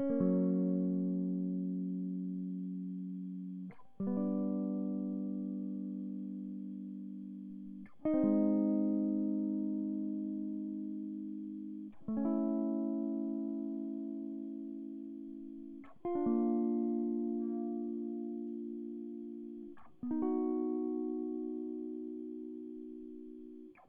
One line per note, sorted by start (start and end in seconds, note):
0.00 3.68 C#4
0.10 3.61 A#3
0.21 3.74 F#3
4.01 7.89 G3
4.07 7.89 B3
4.17 7.86 D4
8.05 11.91 D#4
8.14 11.96 C4
8.24 11.94 G#3
12.09 15.83 A3
12.17 15.90 C#4
12.25 15.83 E4
16.05 19.76 F4
16.15 19.77 D4
16.27 19.72 A#3
20.03 23.69 B3
20.11 23.78 D#4
20.22 23.74 F#4